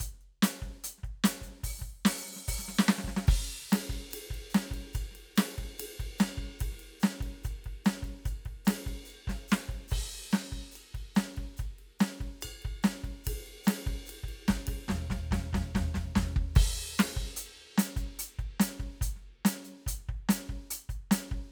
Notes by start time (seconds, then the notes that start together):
0.01 closed hi-hat, kick
0.13 kick, snare
0.22 closed hi-hat
0.43 closed hi-hat, snare
0.62 kick, snare, closed hi-hat
0.84 closed hi-hat, snare
0.99 snare
1.04 kick, closed hi-hat
1.25 closed hi-hat, snare
1.42 closed hi-hat, kick
1.61 open hi-hat, kick, snare
1.80 kick, snare
1.85 open hi-hat
2.06 open hi-hat, snare
2.26 open hi-hat
2.37 snare
2.49 open hi-hat, kick
2.59 snare
2.69 snare
2.80 snare
2.89 snare
2.99 snare
3.05 kick, snare
3.17 snare
3.28 kick, crash
3.70 snare, hi-hat pedal, ride
3.90 kick, ride
4.11 hi-hat pedal, ride
4.31 kick, ride
4.51 hi-hat pedal
4.55 snare, ride
4.72 kick, ride
4.94 kick, hi-hat pedal, ride bell
5.12 snare
5.16 ride
5.37 snare, hi-hat pedal, ride
5.59 kick, ride
5.79 hi-hat pedal, ride
6.00 kick, ride
6.19 snare, hi-hat pedal, ride bell
6.38 kick
6.60 kick, hi-hat pedal, ride
6.73 snare
6.80 ride
7.01 snare, hi-hat pedal, ride bell
7.21 kick, ride
7.44 kick, hi-hat pedal, ride bell
7.65 kick, ride
7.86 snare, hi-hat pedal, ride bell
8.03 kick, ride
8.26 kick, hi-hat pedal, ride bell
8.46 kick, ride
8.66 snare, hi-hat pedal, ride
8.87 kick, ride
9.06 hi-hat pedal
9.11 ride bell
9.28 kick, snare, ride
9.49 snare, hi-hat pedal, ride bell
9.69 kick, ride
9.89 kick, hi-hat pedal, crash
10.10 ride
10.32 snare, hi-hat pedal, ride bell
10.53 kick, ride
10.72 hi-hat pedal
10.76 ride bell
10.95 kick, ride
11.16 snare, hi-hat pedal, ride bell
11.38 kick, ride
11.58 kick, hi-hat pedal, ride bell
11.79 ride
12.00 snare, hi-hat pedal, ride bell
12.21 kick, ride
12.42 kick, hi-hat pedal, ride bell
12.63 kick, ride
12.84 snare, hi-hat pedal, ride bell
13.04 kick, ride
13.25 kick, hi-hat pedal, ride
13.47 ride
13.65 snare, hi-hat pedal
13.69 ride
13.87 kick, ride
14.07 hi-hat pedal, ride
14.24 kick
14.29 ride
14.49 kick, snare, ride bell
14.68 kick, ride
14.89 kick, snare, floor tom
15.11 kick, snare, floor tom
15.32 kick, snare, floor tom
15.54 kick, snare, floor tom
15.76 kick, snare, floor tom
15.95 kick, snare, floor tom
16.16 kick, snare, floor tom
16.37 kick
16.56 kick, crash
16.99 snare, hi-hat pedal, ride
17.17 kick
17.37 closed hi-hat
17.57 closed hi-hat
17.79 closed hi-hat, snare
17.97 closed hi-hat, kick
18.20 closed hi-hat
18.39 kick, closed hi-hat
18.61 closed hi-hat, snare
18.80 kick, closed hi-hat
19.02 closed hi-hat, kick
19.17 snare
19.23 closed hi-hat
19.46 closed hi-hat, snare
19.65 closed hi-hat
19.87 closed hi-hat, kick
19.99 snare
20.10 kick, closed hi-hat
20.30 closed hi-hat, snare
20.50 kick, closed hi-hat
20.71 closed hi-hat
20.90 closed hi-hat, kick
21.12 closed hi-hat, snare
21.32 kick